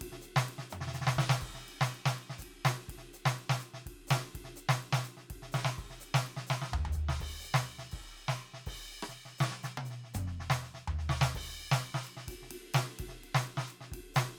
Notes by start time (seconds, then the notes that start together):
0.01 kick, ride
0.07 kick
0.09 kick, snare
0.21 hi-hat pedal
0.26 ride
0.36 snare
0.48 ride
0.58 snare
0.70 hi-hat pedal, mid tom
0.81 snare
0.87 snare
0.94 snare, hi-hat pedal
1.01 snare
1.07 snare
1.17 kick, snare
1.22 kick
1.29 snare
1.41 kick, crash
1.48 kick
1.54 snare
1.68 ride
1.81 snare
1.85 hi-hat pedal
1.95 ride
2.06 snare
2.18 ride
2.30 snare
2.38 kick, hi-hat pedal
2.42 ride
2.46 kick
2.65 snare, hi-hat pedal, ride
2.89 kick, ride
2.98 snare
3.13 hi-hat pedal, ride
3.25 snare
3.39 ride
3.50 snare
3.59 hi-hat pedal, ride
3.74 snare
3.86 kick, ride
4.07 snare, hi-hat pedal, ride
4.16 snare
4.35 kick, ride
4.40 kick, snare
4.56 hi-hat pedal, ride
4.69 snare
4.83 ride
4.93 snare
4.98 snare
5.04 hi-hat pedal, ride
5.17 snare
5.30 kick, ride
5.36 kick
5.42 snare
5.52 snare, hi-hat pedal
5.65 snare
5.78 kick, crash
5.88 kick, snare
6.00 hi-hat pedal, ride
6.14 snare
6.27 ride
6.37 snare
6.47 snare, hi-hat pedal
6.62 snare
6.72 kick, floor tom
6.85 floor tom
6.92 kick, hi-hat pedal
7.09 snare
7.20 kick, crash
7.29 kick, cross-stick
7.40 hi-hat pedal
7.44 closed hi-hat
7.54 snare
7.68 closed hi-hat
7.79 snare
7.90 kick, hi-hat pedal, crash
7.95 snare
8.00 kick
8.17 open hi-hat
8.28 snare
8.41 open hi-hat
8.54 snare
8.66 kick, crash
8.72 kick, snare
8.78 kick
8.91 open hi-hat
9.03 cross-stick
9.09 snare, hi-hat pedal
9.25 snare
9.38 snare, hi-hat pedal
9.52 snare
9.63 snare, hi-hat pedal
9.77 high tom
9.85 hi-hat pedal
9.90 snare
10.04 snare
10.14 kick, hi-hat pedal, mid tom
10.21 kick
10.26 kick, snare
10.40 snare
10.50 snare, hi-hat pedal
10.62 snare
10.74 snare
10.80 kick
10.88 floor tom
10.98 snare
11.08 kick, snare
11.21 snare
11.27 hi-hat pedal
11.35 kick, crash
11.42 kick, snare
11.46 snare
11.60 ride bell
11.71 snare
11.77 hi-hat pedal
11.85 ride
11.94 snare
12.03 hi-hat pedal, ride
12.17 snare
12.28 kick, hi-hat pedal, ride
12.42 snare
12.51 ride
12.74 snare, ride
12.99 kick, ride
13.07 kick, snare
13.24 ride
13.35 snare
13.41 hi-hat pedal
13.47 ride
13.57 snare
13.67 hi-hat pedal, ride
13.81 snare
13.92 kick, ride
13.98 kick
14.01 kick
14.14 snare, hi-hat pedal, ride